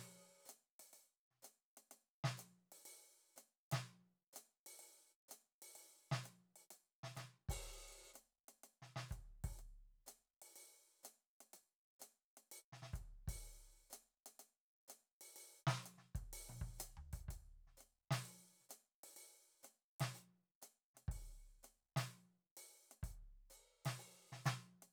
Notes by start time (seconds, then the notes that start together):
0.01 open hi-hat
0.46 closed hi-hat, hi-hat pedal
0.80 open hi-hat
0.93 open hi-hat
1.31 snare
1.34 snare
1.42 closed hi-hat, hi-hat pedal
1.77 closed hi-hat
1.91 closed hi-hat
2.24 snare
2.37 closed hi-hat, hi-hat pedal
2.72 open hi-hat
2.85 open hi-hat
3.36 closed hi-hat, hi-hat pedal
3.72 snare, open hi-hat
4.33 closed hi-hat, hi-hat pedal
4.66 open hi-hat
4.79 open hi-hat
5.29 closed hi-hat, hi-hat pedal
5.62 open hi-hat
5.75 open hi-hat
6.12 snare
6.23 closed hi-hat, hi-hat pedal
6.56 open hi-hat
6.71 open hi-hat
7.04 snare
7.15 snare, closed hi-hat, hi-hat pedal
7.49 open hi-hat, kick
8.01 snare
8.14 closed hi-hat, hi-hat pedal
8.48 closed hi-hat
8.64 open hi-hat
8.82 snare
8.96 snare
9.09 kick, closed hi-hat, hi-hat pedal
9.44 kick, open hi-hat
9.59 open hi-hat
10.06 closed hi-hat, hi-hat pedal
10.42 open hi-hat
10.56 open hi-hat
11.03 closed hi-hat, hi-hat pedal
11.41 closed hi-hat
11.54 open hi-hat
12.00 closed hi-hat, hi-hat pedal
12.37 closed hi-hat
12.52 open hi-hat
12.73 snare
12.82 snare
12.93 kick, closed hi-hat, hi-hat pedal
13.28 kick, open hi-hat
13.44 open hi-hat
13.90 closed hi-hat, hi-hat pedal
14.26 open hi-hat
14.39 open hi-hat
14.88 closed hi-hat, hi-hat pedal
15.21 open hi-hat
15.36 open hi-hat
15.67 snare
15.82 closed hi-hat, hi-hat pedal
15.98 snare
16.15 kick, closed hi-hat
16.33 open hi-hat
16.49 high tom
16.61 kick
16.79 closed hi-hat, hi-hat pedal
16.97 floor tom
17.13 kick, open hi-hat
17.28 kick, open hi-hat
17.67 snare
17.77 closed hi-hat, hi-hat pedal
18.11 snare, open hi-hat
18.25 open hi-hat
18.61 snare
18.69 closed hi-hat, hi-hat pedal
19.04 open hi-hat
19.16 open hi-hat
19.63 closed hi-hat, hi-hat pedal
20.00 snare, open hi-hat
20.14 open hi-hat
20.62 closed hi-hat, hi-hat pedal
20.95 snare, closed hi-hat
21.08 kick, open hi-hat
21.63 closed hi-hat, hi-hat pedal
21.96 snare, open hi-hat
22.11 open hi-hat
22.57 hi-hat pedal, open hi-hat
22.91 closed hi-hat
23.03 kick, open hi-hat
23.50 hi-hat pedal
23.85 snare, open hi-hat
23.99 open hi-hat
24.32 snare
24.45 snare, closed hi-hat, hi-hat pedal
24.82 closed hi-hat